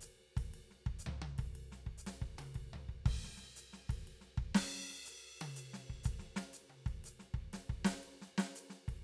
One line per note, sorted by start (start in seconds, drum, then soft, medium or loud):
0.01 hi-hat pedal medium
0.01 ride medium
0.20 snare soft
0.37 kick medium
0.37 ride medium
0.54 ride medium
0.71 snare soft
0.86 kick medium
0.99 hi-hat pedal medium
1.07 floor tom medium
1.22 high tom medium
1.38 kick soft
1.38 ride soft
1.44 hi-hat pedal soft
1.56 ride soft
1.72 snare soft
1.87 kick soft
1.98 hi-hat pedal medium
2.07 snare medium
2.07 ride medium
2.22 kick soft
2.39 high tom medium
2.39 ride medium
2.55 kick soft
2.55 ride soft
2.74 floor tom medium
2.89 kick soft
3.06 kick medium
3.06 crash medium
3.24 snare soft
3.37 snare soft
3.56 hi-hat pedal medium
3.56 ride soft
3.73 snare soft
3.90 kick medium
3.90 ride medium
4.08 ride soft
4.21 snare soft
4.38 kick medium
4.55 snare loud
4.55 crash medium
4.90 snare soft
5.06 hi-hat pedal medium
5.06 ride medium
5.41 high tom medium
5.41 ride medium
5.56 hi-hat pedal medium
5.56 ride soft
5.74 snare soft
5.90 kick soft
6.04 kick medium
6.04 hi-hat pedal medium
6.04 ride medium
6.19 snare soft
6.36 snare medium
6.53 hi-hat pedal medium
6.53 ride medium
6.70 high tom soft
6.86 kick medium
6.86 ride soft
7.04 hi-hat pedal medium
7.04 ride soft
7.20 snare soft
7.34 kick soft
7.53 snare medium
7.53 ride medium
7.70 kick soft
7.85 snare loud
7.85 ride medium
8.03 ride medium
8.22 snare soft
8.38 snare loud
8.56 hi-hat pedal medium
8.56 ride medium
8.70 snare soft
8.88 kick soft
8.88 ride soft